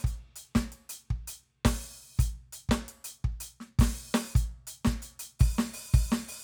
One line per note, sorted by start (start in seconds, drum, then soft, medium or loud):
0.01 kick medium
0.01 hi-hat pedal soft
0.07 closed hi-hat medium
0.36 closed hi-hat loud
0.55 kick medium
0.55 snare loud
0.72 closed hi-hat medium
0.89 closed hi-hat loud
1.10 kick medium
1.28 closed hi-hat loud
1.65 open hi-hat loud
1.65 kick loud
1.65 snare loud
2.17 closed hi-hat loud
2.17 kick loud
2.17 hi-hat pedal soft
2.53 closed hi-hat loud
2.69 kick medium
2.69 snare loud
2.88 closed hi-hat medium
3.04 closed hi-hat loud
3.24 kick medium
3.40 closed hi-hat loud
3.60 snare soft
3.79 open hi-hat loud
3.79 kick loud
3.79 snare loud
4.14 open hi-hat loud
4.14 snare loud
4.32 closed hi-hat loud
4.32 kick loud
4.32 hi-hat pedal medium
4.67 closed hi-hat loud
4.85 kick medium
4.85 snare loud
5.02 closed hi-hat medium
5.19 closed hi-hat loud
5.40 open hi-hat loud
5.40 kick loud
5.58 snare loud
5.74 open hi-hat loud
5.93 open hi-hat loud
5.93 kick loud
6.12 snare loud
6.28 open hi-hat loud